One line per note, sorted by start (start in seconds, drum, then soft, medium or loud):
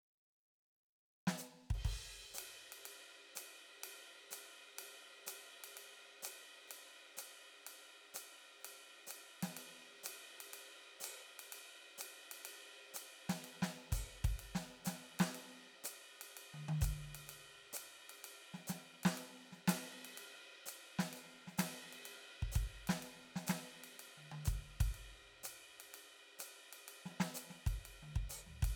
1.27 snare medium
1.38 hi-hat pedal medium
1.70 kick soft
1.70 ride medium
1.84 kick soft
1.84 crash medium
2.34 hi-hat pedal medium
2.38 ride loud
2.72 ride medium
2.85 ride medium
3.35 hi-hat pedal medium
3.35 ride medium
3.83 hi-hat pedal soft
3.83 ride medium
4.31 hi-hat pedal medium
4.31 ride medium
4.78 ride medium
5.26 hi-hat pedal medium
5.26 ride medium
5.64 ride medium
5.77 ride medium
6.22 hi-hat pedal medium
6.22 ride medium
6.67 hi-hat pedal soft
6.67 ride medium
7.17 hi-hat pedal medium
7.17 ride medium
7.67 ride medium
8.14 hi-hat pedal medium
8.14 ride medium
8.60 hi-hat pedal soft
8.64 ride medium
9.07 hi-hat pedal medium
9.07 ride medium
9.42 snare soft
9.42 ride medium
9.57 ride medium
10.03 hi-hat pedal medium
10.03 ride loud
10.40 ride medium
10.53 ride medium
11.00 hi-hat pedal medium
11.00 ride medium
11.39 ride medium
11.52 ride medium
11.98 hi-hat pedal medium
11.98 ride medium
12.31 ride medium
12.45 ride medium
12.94 hi-hat pedal medium
12.94 ride medium
13.29 snare medium
13.29 ride medium
13.44 ride medium
13.62 snare medium
13.92 kick soft
13.92 hi-hat pedal medium
13.92 ride medium
14.24 kick soft
14.24 ride medium
14.39 hi-hat pedal soft
14.39 ride medium
14.55 snare medium
14.85 snare soft
14.85 hi-hat pedal loud
14.85 ride medium
15.19 snare medium
15.19 ride medium
15.30 hi-hat pedal soft
15.35 ride medium
15.84 hi-hat pedal loud
15.84 ride medium
16.21 ride medium
16.37 ride medium
16.54 high tom soft
16.68 high tom medium
16.81 kick soft
16.81 hi-hat pedal loud
16.81 ride medium
17.15 ride medium
17.26 hi-hat pedal soft
17.26 ride medium
17.73 hi-hat pedal loud
17.73 ride medium
18.09 ride medium
18.17 hi-hat pedal soft
18.24 ride medium
18.53 snare soft
18.67 snare soft
18.67 hi-hat pedal medium
18.67 ride medium
19.03 snare medium
19.03 ride medium
19.14 hi-hat pedal soft
19.14 ride medium
19.52 snare soft
19.67 snare medium
19.67 hi-hat pedal loud
19.67 ride loud
20.05 ride medium
20.15 hi-hat pedal soft
20.15 ride medium
20.66 hi-hat pedal medium
20.66 ride medium
20.99 snare medium
20.99 ride medium
21.13 hi-hat pedal soft
21.13 ride medium
21.47 snare soft
21.58 snare medium
21.58 hi-hat pedal medium
21.58 ride loud
21.93 ride medium
22.03 hi-hat pedal soft
22.03 ride medium
22.42 kick soft
22.52 kick soft
22.52 hi-hat pedal medium
22.52 ride medium
22.87 snare medium
22.87 ride medium
22.98 hi-hat pedal soft
23.02 ride medium
23.36 snare soft
23.47 snare medium
23.47 hi-hat pedal loud
23.47 ride loud
23.84 ride medium
23.93 hi-hat pedal soft
23.99 ride medium
24.17 high tom soft
24.31 high tom soft
24.45 kick soft
24.45 hi-hat pedal medium
24.45 ride medium
24.80 kick soft
24.80 ride medium
24.94 ride soft
25.43 hi-hat pedal loud
25.43 ride medium
25.80 ride medium
25.90 hi-hat pedal soft
25.90 ride medium
26.39 hi-hat pedal medium
26.39 ride medium
26.73 ride medium
26.88 ride medium
27.05 snare soft
27.20 snare medium
27.34 hi-hat pedal loud
27.34 ride medium
27.50 snare soft
27.66 kick soft
27.66 ride medium
27.85 ride medium
28.02 high tom soft
28.16 kick soft
28.29 hi-hat pedal medium
28.29 ride medium
28.46 floor tom soft
28.62 kick soft
28.62 ride medium